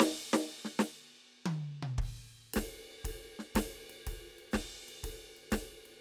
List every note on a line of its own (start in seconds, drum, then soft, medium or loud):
0.01 snare loud
0.01 ride medium
0.34 snare loud
0.49 ride medium
0.66 snare medium
0.80 snare loud
1.46 high tom loud
1.83 mid tom loud
1.99 kick medium
1.99 crash soft
2.54 kick soft
2.54 snare medium
2.54 hi-hat pedal medium
2.54 ride loud
2.91 ride soft
3.05 kick medium
3.05 ride loud
3.40 snare soft
3.56 kick medium
3.56 snare loud
3.56 hi-hat pedal soft
3.56 ride loud
3.91 ride medium
4.08 kick medium
4.08 ride medium
4.39 ride soft
4.52 kick soft
4.52 snare medium
4.52 hi-hat pedal soft
4.52 ride medium
4.89 ride soft
5.04 kick soft
5.04 ride medium
5.38 ride soft
5.51 kick soft
5.51 snare medium
5.51 hi-hat pedal soft
5.51 ride loud
5.86 ride soft